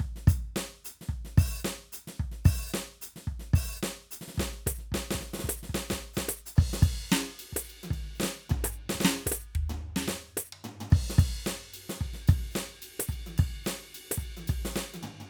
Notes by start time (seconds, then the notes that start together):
0.01 kick
0.17 snare
0.28 closed hi-hat, kick
0.57 snare
0.85 closed hi-hat
1.02 snare
1.10 kick
1.26 snare
1.38 open hi-hat, kick
1.61 hi-hat pedal
1.66 snare
1.93 closed hi-hat
2.08 snare
2.21 kick
2.32 snare
2.45 open hi-hat, kick
2.71 snare, hi-hat pedal
3.02 closed hi-hat
3.17 snare
3.28 kick
3.40 snare
3.55 open hi-hat, kick
3.78 hi-hat pedal
3.84 snare
4.12 closed hi-hat
4.22 snare
4.29 snare
4.36 kick, snare
4.41 snare
4.53 snare
4.60 snare
4.67 kick, high tom
4.79 snare
4.93 kick, snare
5.12 kick, snare
5.34 snare
5.40 snare
5.45 kick, snare
5.50 high tom
5.64 snare
5.70 kick
5.75 snare
5.90 kick, snare, hi-hat pedal
6.01 snare
6.15 kick, snare, hi-hat pedal
6.30 high tom
6.47 closed hi-hat
6.57 kick, crash
6.74 snare
6.83 kick, ride bell
7.10 snare, hi-hat pedal
7.40 ride
7.54 kick, high tom
7.70 ride
7.84 high tom
7.91 kick, ride bell
8.16 hi-hat pedal
8.21 snare
8.24 snare
8.50 kick, floor tom
8.65 cross-stick, high tom
8.90 snare
8.96 kick
9.01 snare
9.06 snare
9.27 kick, high tom
9.33 high tom
9.56 mid tom
9.70 floor tom
9.97 snare
10.09 snare
10.38 high tom
10.53 high tom
10.65 floor tom
10.81 floor tom
10.91 kick, crash
11.11 snare
11.19 kick, ride bell
11.46 snare, hi-hat pedal
11.75 ride
11.90 snare
12.02 kick
12.14 snare
12.29 kick, ride
12.52 hi-hat pedal
12.56 snare
12.83 ride
13.01 high tom
13.10 kick, ride
13.27 high tom
13.39 kick, ride bell
13.65 snare, hi-hat pedal, ride
13.95 ride
14.12 high tom
14.19 kick
14.23 ride
14.38 high tom
14.48 kick, ride
14.66 snare
14.73 snare, hi-hat pedal
14.95 high tom
15.04 floor tom
15.21 floor tom